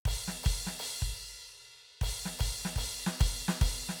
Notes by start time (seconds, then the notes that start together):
0.06 kick, crash
0.28 snare
0.43 kick, crash
0.67 snare
0.71 snare
0.79 crash
1.02 kick
2.01 kick, crash
2.26 snare
2.39 kick, crash
2.65 snare
2.76 kick, crash
2.81 kick
3.07 snare
3.20 kick, crash
3.48 snare
3.61 kick, crash
3.89 snare